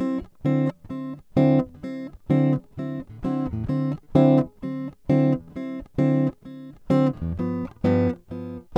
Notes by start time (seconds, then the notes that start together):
0.01 F#3 C4 E4
0.46 D3 F#3 C4 E4
0.91 D3 F#3 C4 E4
1.38 D3 F#3 C4 E4
1.77 D3
1.85 F#3 C4 E4
2.31 D3 F#3 C4 E4
2.79 D3 F#3 C4 E4
3.25 D3 D#3 C4 E4
3.54 A2
3.70 D3 G3 C4 E4
4.17 D3 F#3 C4 E4
4.64 D3 F#3 C4 E4
5.11 D3 F#3 C4 E4
5.52 D3
5.57 F#3 C4 E4
6.00 D3 F#3 C4 E4
6.44 F#3 C4 E4
6.49 D3
6.91 D3 F#3 C4 E4
7.11 A2
7.15 D3
7.23 E2
7.39 G2 F3 B3 D#4
7.86 G2 F3 B3 E4
8.31 G2 F3 B3 E4